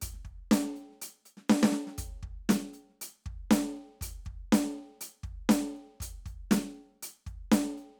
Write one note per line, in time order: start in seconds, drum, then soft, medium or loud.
0.02 closed hi-hat loud
0.02 kick medium
0.13 snare soft
0.25 kick soft
0.25 closed hi-hat soft
0.51 closed hi-hat loud
0.51 snare loud
0.58 snare soft
0.76 closed hi-hat soft
0.92 snare soft
1.02 closed hi-hat loud
1.26 closed hi-hat medium
1.37 snare soft
1.49 snare loud
1.49 hi-hat pedal soft
1.63 snare loud
1.72 snare medium
1.87 snare soft
1.98 closed hi-hat loud
1.98 kick medium
2.23 kick soft
2.23 closed hi-hat soft
2.49 closed hi-hat loud
2.49 snare loud
2.74 closed hi-hat soft
2.90 snare soft
3.01 closed hi-hat loud
3.24 kick medium
3.24 closed hi-hat soft
3.51 closed hi-hat loud
3.51 snare loud
3.56 snare medium
3.76 closed hi-hat soft
4.01 closed hi-hat loud
4.01 kick medium
4.06 snare soft
4.26 kick soft
4.26 closed hi-hat soft
4.53 closed hi-hat loud
4.53 snare loud
5.01 closed hi-hat loud
5.24 kick medium
5.24 closed hi-hat soft
5.49 closed hi-hat loud
5.49 snare loud
5.76 closed hi-hat soft
6.00 closed hi-hat loud
6.00 kick medium
6.26 closed hi-hat soft
6.26 kick soft
6.51 closed hi-hat loud
6.51 snare loud
6.57 snare soft
6.75 closed hi-hat soft
7.03 closed hi-hat loud
7.27 kick soft
7.27 closed hi-hat soft
7.52 closed hi-hat loud
7.52 snare loud
7.59 snare soft
7.78 closed hi-hat soft